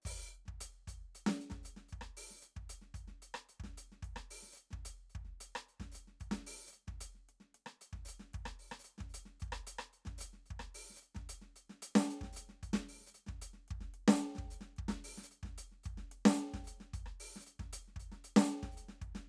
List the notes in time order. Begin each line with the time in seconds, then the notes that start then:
0.03 open hi-hat, kick, hi-hat pedal
0.12 kick
0.32 closed hi-hat
0.45 kick, snare
0.60 closed hi-hat
0.87 closed hi-hat, kick
1.15 closed hi-hat
1.26 snare
1.40 closed hi-hat
1.50 kick, snare
1.63 closed hi-hat, hi-hat pedal
1.76 snare
1.88 closed hi-hat, kick
2.01 cross-stick
2.17 open hi-hat
2.30 snare
2.42 closed hi-hat, hi-hat pedal
2.56 kick, snare
2.69 closed hi-hat
2.81 snare
2.94 closed hi-hat, kick
3.07 snare
3.22 closed hi-hat
3.34 cross-stick
3.49 closed hi-hat
3.59 kick
3.64 snare
3.77 closed hi-hat
3.92 snare
4.02 kick, closed hi-hat
4.16 cross-stick
4.30 open hi-hat
4.42 snare
4.52 closed hi-hat, hi-hat pedal
4.70 kick, snare
4.85 closed hi-hat
5.09 closed hi-hat
5.15 kick
5.25 snare
5.40 closed hi-hat
5.55 cross-stick
5.68 closed hi-hat
5.80 kick, snare
5.92 closed hi-hat, hi-hat pedal
6.07 snare
6.20 closed hi-hat, kick
6.31 snare
6.46 open hi-hat
6.67 hi-hat pedal
6.73 closed hi-hat
6.87 kick, snare
7.00 closed hi-hat
7.14 snare
7.29 closed hi-hat
7.40 snare
7.54 closed hi-hat
7.66 cross-stick
7.81 closed hi-hat
7.93 kick, snare
8.05 closed hi-hat, hi-hat pedal
8.19 snare
8.33 kick, closed hi-hat
8.45 cross-stick
8.59 open hi-hat
8.71 cross-stick
8.79 hi-hat pedal
8.84 closed hi-hat
8.98 kick, snare
9.09 hi-hat pedal
9.14 closed hi-hat
9.25 snare
9.40 closed hi-hat, kick
9.48 kick
9.52 cross-stick
9.67 closed hi-hat
9.78 cross-stick
9.93 closed hi-hat
10.05 kick, snare
10.18 closed hi-hat, hi-hat pedal
10.33 snare
10.46 closed hi-hat
10.50 kick
10.59 cross-stick
10.74 open hi-hat
10.90 snare
10.96 hi-hat pedal
11.02 closed hi-hat
11.15 kick, snare
11.21 kick
11.29 closed hi-hat
11.41 snare
11.56 closed hi-hat
11.69 snare
11.82 closed hi-hat
11.95 snare
12.10 closed hi-hat
12.21 kick, snare
12.33 closed hi-hat, hi-hat pedal
12.49 snare
12.62 closed hi-hat, kick
12.73 snare
12.88 open hi-hat
13.00 snare
13.06 hi-hat pedal
13.14 closed hi-hat
13.26 kick, snare
13.41 closed hi-hat
13.53 snare
13.68 kick, closed hi-hat
13.80 snare
13.94 closed hi-hat
14.08 snare
14.22 closed hi-hat
14.35 kick, snare
14.44 kick
14.50 open hi-hat, hi-hat pedal
14.61 snare
14.76 kick, closed hi-hat
14.88 snare
15.04 open hi-hat
15.17 snare
15.23 hi-hat pedal
15.31 closed hi-hat
15.43 kick, snare
15.58 closed hi-hat
15.71 snare
15.83 closed hi-hat, kick
15.97 snare
16.11 closed hi-hat
16.25 snare
16.39 closed hi-hat
16.53 kick, snare
16.64 closed hi-hat, hi-hat pedal
16.80 snare
16.93 closed hi-hat, kick
16.99 kick
17.06 cross-stick
17.20 open hi-hat
17.36 snare
17.41 hi-hat pedal
17.46 closed hi-hat
17.59 kick, snare
17.73 closed hi-hat
17.87 snare
17.96 closed hi-hat, kick
18.11 snare
18.24 closed hi-hat
18.36 snare
18.41 cross-stick
18.50 closed hi-hat
18.62 kick, snare
18.68 kick, hi-hat pedal
18.77 closed hi-hat
18.88 snare
19.01 kick, closed hi-hat
19.15 snare